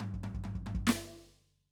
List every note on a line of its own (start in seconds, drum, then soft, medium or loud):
0.00 floor tom medium
0.00 high tom medium
0.14 kick soft
0.23 floor tom medium
0.23 high tom medium
0.35 kick soft
0.44 floor tom medium
0.44 high tom medium
0.55 kick soft
0.66 floor tom medium
0.66 high tom medium
0.75 kick medium
0.87 snare loud
0.89 snare loud